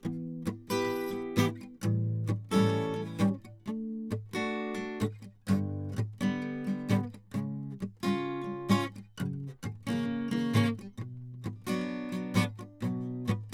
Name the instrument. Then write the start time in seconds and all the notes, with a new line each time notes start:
acoustic guitar
0.04 E3 B3
0.71 B3 E4 G4 B4
1.10 B3 E4
1.37 E3 B3 E4 G4
1.82 A2 E3 G3
2.52 E3 G3 C#4 E4 A4
2.57 A2
2.68 A2
2.95 G3 C#4
3.20 D#3 G3 C#4 E4
3.66 A3 D4
4.35 A3 D4 F#4
4.75 A3 D4
5.48 G2 D3 G3 B3
6.22 D3 G3 B3
6.43 D3
6.66 D3 G3
6.90 D3 G3 B3
7.32 C#3 G#3
8.04 C#3 G3 C#4 F4
8.43 G3 C#4
8.70 G#3 C#4 F4
9.21 C#3
9.88 A#3 C#4
9.92 C#3
10.06 C#3
10.32 C#3 A#3
10.55 C#3 A#3 C#4
10.98 B2
11.67 F#3 B3 D4 F#4
12.13 F#3
12.36 F#3 B3 D4
12.60 D4
12.81 B2 F#3